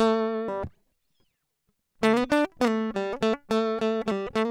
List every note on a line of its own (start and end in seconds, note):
0.00 0.47 A3
0.49 0.68 G3
2.04 2.18 A3
2.18 2.26 B3
2.62 2.93 A3
2.97 3.21 G3
3.23 3.38 A3
3.52 3.81 A3
3.83 4.04 A3
4.08 4.31 G3
4.36 4.45 A3